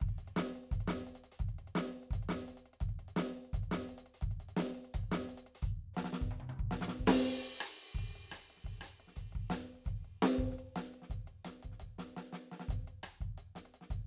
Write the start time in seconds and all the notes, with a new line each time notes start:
0.01 kick, closed hi-hat
0.09 closed hi-hat
0.19 closed hi-hat
0.28 closed hi-hat
0.37 snare
0.47 closed hi-hat
0.56 closed hi-hat
0.64 closed hi-hat
0.72 kick, closed hi-hat
0.81 closed hi-hat
0.88 snare
0.99 closed hi-hat
1.07 closed hi-hat
1.16 closed hi-hat
1.25 closed hi-hat
1.32 closed hi-hat
1.40 kick, closed hi-hat
1.49 closed hi-hat
1.59 closed hi-hat
1.68 closed hi-hat
1.76 snare
1.87 closed hi-hat
1.97 closed hi-hat
2.04 closed hi-hat
2.11 kick, closed hi-hat
2.23 closed hi-hat
2.30 snare
2.41 closed hi-hat
2.49 closed hi-hat
2.58 closed hi-hat
2.66 closed hi-hat
2.74 closed hi-hat
2.81 kick, closed hi-hat
2.90 closed hi-hat
3.00 closed hi-hat
3.09 closed hi-hat
3.17 snare
3.28 closed hi-hat
3.37 closed hi-hat
3.46 closed hi-hat
3.54 kick, closed hi-hat
3.64 closed hi-hat
3.72 snare
3.82 closed hi-hat
3.90 closed hi-hat
3.99 closed hi-hat
4.07 closed hi-hat
4.15 closed hi-hat
4.22 kick, closed hi-hat
4.32 closed hi-hat
4.41 closed hi-hat
4.49 closed hi-hat
4.57 snare
4.67 closed hi-hat
4.75 closed hi-hat
4.85 closed hi-hat
4.95 kick, closed hi-hat
5.04 closed hi-hat
5.12 snare
5.22 closed hi-hat
5.30 closed hi-hat
5.38 closed hi-hat
5.47 closed hi-hat
5.56 closed hi-hat
5.63 open hi-hat, kick
5.94 snare, hi-hat pedal
6.05 snare
6.13 snare
6.22 kick
6.32 high tom
6.41 high tom
6.50 high tom
6.60 kick
6.72 snare
6.82 snare
6.89 snare
7.00 kick
7.07 snare, crash
7.12 cross-stick
7.43 closed hi-hat
7.61 open hi-hat, cross-stick
7.77 hi-hat pedal
7.83 closed hi-hat
7.95 kick, closed hi-hat
8.16 closed hi-hat
8.32 closed hi-hat, cross-stick
8.51 closed hi-hat
8.57 snare
8.65 kick, closed hi-hat
8.82 closed hi-hat, cross-stick
9.01 closed hi-hat
9.08 snare
9.17 closed hi-hat, kick
9.33 kick, closed hi-hat
9.51 open hi-hat, cross-stick, snare
9.74 snare
9.80 snare
9.85 kick, closed hi-hat, hi-hat pedal
10.05 closed hi-hat
10.23 closed hi-hat, snare
10.39 kick, closed hi-hat
10.51 snare
10.59 closed hi-hat
10.77 snare, closed hi-hat
10.94 closed hi-hat
11.03 snare
11.11 kick, closed hi-hat
11.28 closed hi-hat
11.45 snare, closed hi-hat
11.63 kick, closed hi-hat
11.72 snare
11.81 kick, closed hi-hat
11.99 snare, closed hi-hat
12.17 snare, closed hi-hat
12.33 snare, closed hi-hat
12.52 snare, closed hi-hat
12.60 snare
12.69 kick, closed hi-hat
12.88 closed hi-hat
13.04 cross-stick, closed hi-hat
13.21 kick, closed hi-hat
13.39 closed hi-hat
13.56 snare, closed hi-hat
13.66 closed hi-hat
13.75 closed hi-hat
13.82 snare
13.91 kick, closed hi-hat